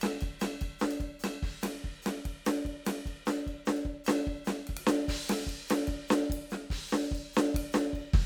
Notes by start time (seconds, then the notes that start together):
0.01 snare, hi-hat pedal, ride bell
0.21 kick, ride bell
0.40 snare, hi-hat pedal, ride bell
0.61 kick, ride bell
0.79 snare, hi-hat pedal
0.91 ride bell
1.00 kick, ride bell
1.20 hi-hat pedal
1.24 snare, ride bell
1.43 kick, crash
1.62 snare, hi-hat pedal, ride
1.84 kick
2.02 snare, hi-hat pedal
2.07 ride
2.26 kick, ride
2.45 snare, hi-hat pedal, ride
2.65 kick, ride
2.85 snare, hi-hat pedal, ride
3.06 kick, ride bell
3.26 snare, hi-hat pedal, ride bell
3.47 kick, ride bell
3.66 snare, hi-hat pedal
3.77 ride bell
3.85 kick
4.04 snare, hi-hat pedal, ride bell
4.27 kick
4.45 snare, hi-hat pedal, ride bell
4.67 kick, ride
4.77 ride
4.87 snare, hi-hat pedal
5.09 kick, crash
5.27 snare, hi-hat pedal, ride
5.47 kick, ride
5.68 snare, hi-hat pedal, ride
5.88 kick, ride
6.08 snare, hi-hat pedal
6.30 kick, crash
6.50 snare, hi-hat pedal
6.71 kick, crash
6.88 hi-hat pedal
6.93 snare
7.12 kick, crash
7.34 snare, hi-hat pedal
7.55 kick, ride
7.73 snare, hi-hat pedal
7.93 kick, crash
8.14 kick, crash